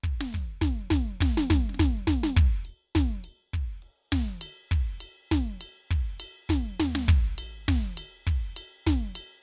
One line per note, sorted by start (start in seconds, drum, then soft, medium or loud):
0.01 kick medium
0.01 hi-hat pedal soft
0.08 crash soft
0.21 snare loud
0.33 open hi-hat loud
0.33 kick medium
0.62 kick medium
0.62 snare loud
0.91 open hi-hat loud
0.91 kick medium
0.91 snare loud
1.21 kick medium
1.21 snare loud
1.38 snare loud
1.51 kick loud
1.51 snare loud
1.70 snare soft
1.75 snare soft
1.80 kick medium
1.80 snare loud
1.80 hi-hat pedal medium
2.08 kick medium
2.08 snare loud
2.24 snare loud
2.37 kick loud
2.37 hi-hat pedal medium
2.65 ride bell medium
2.96 kick medium
2.96 snare loud
2.96 hi-hat pedal medium
3.25 ride bell medium
3.54 kick medium
3.54 ride soft
3.83 ride medium
4.12 kick medium
4.12 snare loud
4.12 hi-hat pedal medium
4.12 ride soft
4.42 ride bell loud
4.72 kick medium
4.72 ride soft
5.01 ride bell loud
5.31 kick medium
5.31 snare loud
5.31 hi-hat pedal medium
5.31 ride soft
5.61 ride bell loud
5.91 kick medium
5.91 ride soft
6.20 ride bell loud
6.50 kick medium
6.50 snare loud
6.50 hi-hat pedal medium
6.50 ride bell medium
6.80 snare loud
6.80 floor tom loud
6.96 snare loud
7.09 kick loud
7.09 snare soft
7.09 ride soft
7.39 ride bell loud
7.68 kick medium
7.68 snare loud
7.68 hi-hat pedal medium
7.68 ride soft
7.88 kick soft
7.98 ride bell loud
8.27 kick medium
8.27 ride soft
8.57 ride bell loud
8.86 kick medium
8.86 snare loud
8.86 hi-hat pedal medium
9.16 ride bell loud